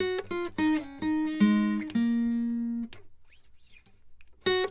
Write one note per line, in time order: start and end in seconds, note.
0.01 0.24 F#4
0.32 0.50 F4
0.59 0.76 D#4
0.76 1.02 C#4
1.03 1.92 D#4
1.41 1.82 G#3
1.96 2.88 A#3
4.47 4.68 F#4